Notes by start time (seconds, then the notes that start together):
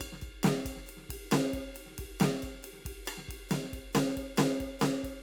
0.01 kick, hi-hat pedal, ride bell
0.07 kick
0.13 snare
0.22 kick, ride bell
0.29 kick
0.32 kick
0.44 snare, hi-hat pedal, ride bell
0.66 kick, ride bell
0.72 kick
0.77 snare
0.87 hi-hat pedal, ride
0.98 snare
1.03 snare
1.10 kick, ride
1.16 kick
1.32 snare, hi-hat pedal, ride bell
1.54 kick, ride
1.60 kick
1.75 hi-hat pedal, ride
1.87 snare
1.92 snare
1.99 kick, ride
2.06 kick
2.20 snare, hi-hat pedal, ride bell
2.43 kick, ride bell
2.49 kick
2.54 snare
2.63 hi-hat pedal, ride
2.73 snare
2.78 snare
2.82 snare
2.86 kick, ride
2.92 kick
2.95 kick
3.06 cross-stick, hi-hat pedal, ride bell
3.18 snare
3.29 kick, ride
3.35 kick
3.49 snare, hi-hat pedal, ride bell
3.65 snare
3.73 kick, ride
3.80 kick
3.93 snare, hi-hat pedal, ride bell
4.09 snare
4.17 kick, ride
4.23 kick
4.37 snare, hi-hat pedal, ride bell
4.50 snare
4.61 kick, ride
4.66 kick
4.80 snare, hi-hat pedal, ride bell
5.04 kick, ride